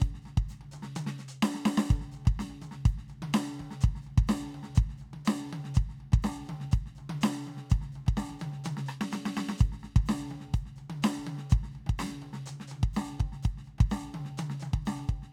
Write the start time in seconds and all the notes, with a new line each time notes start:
0.01 kick, hi-hat pedal, high tom
0.14 snare
0.22 hi-hat pedal, high tom
0.26 snare
0.38 kick, high tom
0.49 snare, hi-hat pedal
0.61 high tom
0.71 hi-hat pedal, high tom
0.83 snare
0.96 hi-hat pedal, high tom
1.07 snare
1.18 snare, hi-hat pedal
1.28 closed hi-hat
1.43 snare, hi-hat pedal
1.55 snare
1.66 snare, hi-hat pedal
1.78 snare
1.90 kick, hi-hat pedal, high tom
2.01 snare
2.12 hi-hat pedal, high tom
2.25 kick, high tom
2.40 snare, hi-hat pedal
2.50 high tom
2.62 hi-hat pedal, high tom
2.71 snare
2.86 kick, hi-hat pedal, high tom
2.98 snare
3.08 hi-hat pedal, high tom
3.22 high tom
3.33 snare, hi-hat pedal
3.47 high tom
3.55 hi-hat pedal
3.60 kick, high tom
3.71 snare
3.81 kick, hi-hat pedal
3.85 high tom
3.95 snare
4.02 hi-hat pedal
4.07 high tom
4.18 kick, high tom
4.28 snare, hi-hat pedal
4.43 high tom
4.49 hi-hat pedal
4.54 high tom
4.63 snare
4.75 kick, hi-hat pedal, high tom
4.89 snare
4.98 hi-hat pedal, high tom
5.13 high tom
5.25 snare, hi-hat pedal
5.40 high tom
5.48 hi-hat pedal
5.53 high tom
5.64 snare
5.74 kick, hi-hat pedal, high tom
5.89 snare
5.96 hi-hat pedal
6.00 high tom
6.12 kick, high tom
6.23 snare, hi-hat pedal
6.37 high tom
6.45 hi-hat pedal
6.49 high tom
6.60 snare
6.72 kick, hi-hat pedal, high tom
6.86 snare
6.95 hi-hat pedal, high tom
7.10 high tom
7.21 snare, hi-hat pedal
7.35 high tom
7.44 hi-hat pedal, high tom
7.57 snare
7.70 kick, hi-hat pedal, high tom
7.82 snare
7.92 hi-hat pedal, high tom
8.07 kick, high tom
8.17 snare, hi-hat pedal
8.30 high tom
8.39 hi-hat pedal, high tom
8.53 snare
8.64 hi-hat pedal, high tom
8.77 snare
8.86 cross-stick, hi-hat pedal
9.01 snare
9.12 snare, hi-hat pedal
9.26 snare
9.34 snare, hi-hat pedal
9.49 snare
9.58 closed hi-hat, kick, hi-hat pedal
9.72 snare
9.79 hi-hat pedal
9.83 snare
9.96 kick, high tom
10.06 snare, hi-hat pedal
10.20 high tom
10.28 hi-hat pedal, high tom
10.40 snare
10.54 kick, hi-hat pedal, high tom
10.66 snare
10.76 hi-hat pedal, high tom
10.90 high tom
11.03 snare, hi-hat pedal
11.15 kick, high tom
11.24 hi-hat pedal, high tom
11.38 snare
11.50 kick, hi-hat pedal, high tom
11.63 snare
11.72 hi-hat pedal, high tom
11.87 kick, high tom
11.98 snare, hi-hat pedal
12.10 high tom
12.22 high tom
12.33 snare
12.46 hi-hat pedal, high tom
12.60 snare
12.68 hi-hat pedal, high tom
12.83 kick, high tom
12.94 snare, hi-hat pedal
13.08 high tom
13.20 kick, high tom
13.32 snare
13.43 kick, hi-hat pedal, high tom
13.58 snare
13.64 hi-hat pedal, high tom
13.79 kick, high tom
13.90 snare, hi-hat pedal
14.03 high tom
14.12 hi-hat pedal, high tom
14.25 snare
14.38 hi-hat pedal, high tom
14.50 snare
14.60 hi-hat pedal, high tom
14.74 kick, high tom
14.86 snare, hi-hat pedal
14.99 high tom
15.08 kick, hi-hat pedal, high tom
15.22 snare